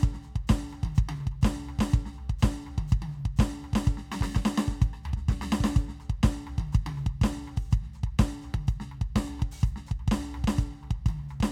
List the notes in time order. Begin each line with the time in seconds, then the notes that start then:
0.01 kick, floor tom, hi-hat pedal
0.14 snare
0.23 floor tom, hi-hat pedal
0.36 kick, floor tom
0.48 kick, snare, hi-hat pedal
0.62 floor tom
0.70 floor tom, hi-hat pedal
0.84 kick, high tom
0.96 kick, floor tom, hi-hat pedal
1.09 high tom
1.16 hi-hat pedal
1.21 floor tom
1.28 kick
1.32 floor tom
1.42 kick, snare, hi-hat pedal
1.57 floor tom
1.65 hi-hat pedal
1.69 floor tom
1.79 kick, snare
1.90 kick, hi-hat pedal
1.96 floor tom
2.06 snare
2.13 hi-hat pedal
2.19 floor tom
2.30 kick, floor tom
2.39 snare, hi-hat pedal
2.44 kick
2.55 floor tom
2.63 hi-hat pedal
2.67 floor tom
2.79 kick, high tom
2.89 hi-hat pedal
2.93 kick
3.03 high tom
3.12 floor tom, hi-hat pedal
3.26 kick, floor tom
3.37 kick, snare, hi-hat pedal
3.53 floor tom
3.61 hi-hat pedal
3.65 floor tom
3.74 kick, snare
3.84 kick, hi-hat pedal
3.89 floor tom
3.98 snare
4.06 hi-hat pedal
4.12 snare
4.22 kick, snare
4.32 snare, hi-hat pedal
4.37 kick
4.46 snare
4.55 snare, hi-hat pedal
4.69 kick, snare
4.82 kick, floor tom, hi-hat pedal
4.94 cross-stick
5.04 floor tom, hi-hat pedal
5.14 kick, snare
5.29 kick, snare, hi-hat pedal
5.42 snare
5.52 snare, hi-hat pedal
5.61 kick, snare
5.77 kick, floor tom, hi-hat pedal
5.89 snare
6.00 floor tom, hi-hat pedal
6.10 kick, floor tom
6.24 kick, snare, hi-hat pedal
6.35 floor tom
6.47 floor tom, hi-hat pedal
6.59 kick, high tom
6.73 kick, floor tom, hi-hat pedal
6.87 high tom
6.97 floor tom, hi-hat pedal
7.07 kick, floor tom
7.22 kick, snare, hi-hat pedal
7.38 floor tom
7.45 floor tom, hi-hat pedal
7.57 open hi-hat, kick
7.72 kick, floor tom, hi-hat pedal
7.83 snare
7.94 floor tom, hi-hat pedal
8.04 kick, floor tom
8.19 kick, snare, hi-hat pedal
8.32 floor tom
8.42 floor tom, hi-hat pedal
8.55 kick, high tom
8.68 kick, floor tom, hi-hat pedal
8.81 snare
8.90 floor tom, hi-hat pedal
9.02 kick, floor tom
9.16 kick, snare, hi-hat pedal
9.28 floor tom
9.39 kick, floor tom, hi-hat pedal
9.52 open hi-hat
9.64 kick, floor tom, hi-hat pedal
9.77 snare
9.87 floor tom, hi-hat pedal
9.92 kick
10.00 floor tom
10.08 kick, snare, hi-hat pedal
10.23 floor tom
10.33 floor tom, hi-hat pedal
10.45 kick, snare
10.59 kick, floor tom, hi-hat pedal
10.72 high tom
10.81 floor tom, hi-hat pedal
10.91 kick, floor tom
11.07 kick, hi-hat pedal, high tom
11.19 floor tom
11.29 floor tom, hi-hat pedal
11.41 kick, snare